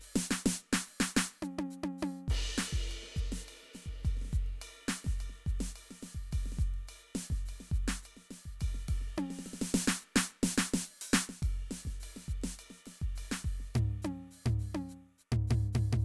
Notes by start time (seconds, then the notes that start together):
0.01 hi-hat pedal
0.16 snare
0.28 snare, hi-hat pedal
0.46 snare
0.57 hi-hat pedal
0.73 snare
0.85 hi-hat pedal
1.00 snare
1.15 snare, hi-hat pedal
1.42 hi-hat pedal, high tom
1.59 high tom
1.71 hi-hat pedal
1.84 high tom
1.98 hi-hat pedal
2.03 high tom
2.28 kick, hi-hat pedal, ride
2.58 snare, hi-hat pedal
2.73 kick, snare
2.88 hi-hat pedal, ride bell
3.03 snare
3.16 kick, hi-hat pedal, ride
3.32 snare, ride
3.46 hi-hat pedal, ride bell
3.62 snare
3.74 snare, hi-hat pedal, ride
3.86 kick, ride
4.04 kick, hi-hat pedal, ride bell
4.17 snare
4.22 snare
4.25 snare
4.28 snare
4.32 kick, hi-hat pedal, ride
4.47 ride
4.61 hi-hat pedal, ride bell
4.88 snare, hi-hat pedal, ride
5.05 kick, snare
5.18 hi-hat pedal, ride bell
5.30 snare
5.47 kick, hi-hat pedal, ride
5.60 snare, ride
5.75 hi-hat pedal, ride bell
5.91 snare
6.01 snare, hi-hat pedal, ride
6.15 kick, ride
6.32 kick, hi-hat pedal, ride bell
6.46 snare
6.52 snare
6.57 kick, snare, hi-hat pedal, ride
6.67 snare
6.74 ride
6.88 hi-hat pedal, ride bell
7.15 snare, hi-hat pedal, ride
7.30 kick, snare
7.46 hi-hat pedal, ride bell
7.60 snare
7.72 kick, hi-hat pedal
7.76 ride
7.88 snare
8.03 hi-hat pedal, ride bell
8.17 snare
8.31 snare, hi-hat pedal, ride
8.45 kick, ride
8.60 kick, hi-hat pedal, ride bell
8.75 snare
8.88 kick, hi-hat pedal, ride
9.01 snare
9.16 hi-hat pedal, high tom
9.31 snare
9.39 snare
9.45 snare, hi-hat pedal
9.54 snare
9.62 snare
9.73 snare, hi-hat pedal
9.88 snare
10.00 hi-hat pedal
10.16 snare
10.28 hi-hat pedal
10.43 snare
10.57 snare, hi-hat pedal
10.74 snare
10.85 hi-hat pedal
11.01 open hi-hat
11.13 snare, hi-hat pedal
11.29 snare
11.42 kick, hi-hat pedal, ride
11.58 kick
11.71 snare, hi-hat pedal
11.85 kick, snare
12.00 hi-hat pedal, ride bell
12.16 snare
12.28 kick, hi-hat pedal, ride
12.42 snare, ride
12.58 hi-hat pedal, ride bell
12.70 snare
12.86 snare, hi-hat pedal, ride
12.99 kick, ride
13.16 hi-hat pedal, ride bell
13.32 snare
13.45 kick, hi-hat pedal, ride
13.60 snare
13.75 floor tom, hi-hat pedal
14.02 closed hi-hat, hi-hat pedal, high tom
14.31 hi-hat pedal
14.46 floor tom
14.59 hi-hat pedal
14.75 high tom
14.89 hi-hat pedal
15.18 hi-hat pedal
15.32 floor tom
15.48 floor tom, hi-hat pedal
15.73 floor tom, hi-hat pedal
15.93 floor tom
15.99 hi-hat pedal